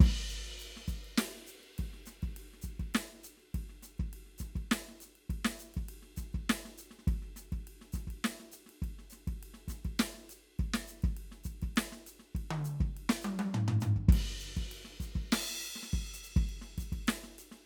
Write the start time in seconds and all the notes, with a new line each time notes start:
0.01 kick, crash
0.30 hi-hat pedal
0.60 hi-hat pedal, ride
0.77 snare
0.88 kick, hi-hat pedal, ride
1.05 ride
1.18 snare, ride
1.47 hi-hat pedal, ride
1.60 snare, ride
1.79 kick, ride
1.94 snare
2.06 snare, hi-hat pedal, ride
2.23 kick, ride
2.37 ride
2.54 snare
2.62 kick, hi-hat pedal, ride
2.80 kick, ride
2.95 snare, ride
3.24 hi-hat pedal, ride
3.37 snare, ride
3.55 kick, ride
3.70 snare
3.83 snare, hi-hat pedal, ride
3.99 kick, ride
4.14 ride
4.26 snare
4.39 kick, snare, hi-hat pedal, ride
4.56 kick, ride
4.72 snare, ride
4.89 snare
5.01 hi-hat pedal, ride
5.06 snare
5.16 ride
5.30 kick, ride
5.45 snare
5.60 hi-hat pedal, ride
5.75 kick, ride
5.89 ride
6.03 snare
6.17 kick, snare, hi-hat pedal, ride
6.34 kick, ride
6.50 snare, ride
6.66 snare
6.78 hi-hat pedal, ride
6.91 snare
6.99 snare
7.08 kick, ride
7.22 snare
7.37 snare, hi-hat pedal, ride
7.53 kick, ride
7.68 ride
7.82 snare
7.93 kick, snare, hi-hat pedal, ride
8.08 kick, ride
8.25 snare, ride
8.40 snare
8.52 hi-hat pedal, ride
8.67 snare, ride
8.72 snare
8.82 kick, ride
8.99 snare
9.10 snare, hi-hat pedal, ride
9.28 kick, ride
9.43 ride
9.54 snare
9.68 kick, snare, hi-hat pedal, ride
9.85 kick, ride
10.00 snare, ride
10.15 snare
10.30 hi-hat pedal, ride
10.46 snare
10.60 kick, ride
10.74 snare
10.88 hi-hat pedal, ride
11.03 kick, ride
11.17 ride
11.32 snare
11.44 kick, hi-hat pedal, ride
11.62 kick, ride
11.77 snare, ride
11.93 snare
12.07 hi-hat pedal, ride
12.20 snare
12.35 kick, ride
12.51 mid tom
12.65 hi-hat pedal, ride
12.81 kick
12.97 ride
13.10 snare
13.22 hi-hat pedal, high tom
13.40 high tom
13.55 floor tom
13.69 floor tom
13.81 floor tom, hi-hat pedal
13.97 kick
14.09 kick, ride, crash
14.40 hi-hat pedal, ride
14.57 kick, ride
14.72 ride
14.85 snare
15.01 kick, snare, hi-hat pedal, ride
15.16 kick
15.33 snare, crash
15.63 hi-hat pedal, ride
15.76 snare
15.83 snare
15.93 kick, ride
16.07 ride
16.14 open hi-hat
16.24 hi-hat pedal
16.37 kick, ride
16.50 ride
16.62 snare
16.78 kick, hi-hat pedal, ride
16.93 kick, ride
17.08 snare, ride
17.24 snare
17.39 hi-hat pedal, ride
17.52 snare